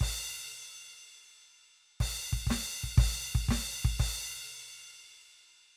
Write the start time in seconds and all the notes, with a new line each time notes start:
0.01 kick, crash
2.01 kick, crash
2.33 kick
2.47 kick, snare, crash
2.52 kick
2.84 kick
2.98 kick, crash
3.35 kick
3.49 kick, snare, crash
3.54 kick
3.85 kick
3.99 kick, crash